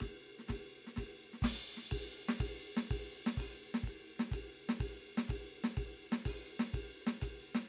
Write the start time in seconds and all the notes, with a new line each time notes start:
0.01 kick, snare, ride
0.40 snare
0.48 kick, snare, hi-hat pedal, ride
0.88 snare
0.96 kick, snare, hi-hat pedal, ride
1.34 snare
1.43 kick, snare, hi-hat pedal, ride
1.78 snare
1.92 kick, ride
2.29 snare
2.40 kick, hi-hat pedal, ride
2.77 snare
2.91 kick, ride
3.27 snare
3.38 kick, hi-hat pedal, ride
3.75 snare
3.84 kick
3.88 ride
4.20 snare
4.32 kick, hi-hat pedal, ride
4.70 snare
4.81 kick, ride
5.18 snare
5.29 kick, hi-hat pedal, ride
5.65 snare
5.78 kick, ride
6.13 snare
6.26 kick, hi-hat pedal, ride
6.60 snare
6.74 kick, ride
7.07 snare
7.22 kick, hi-hat pedal, ride
7.55 snare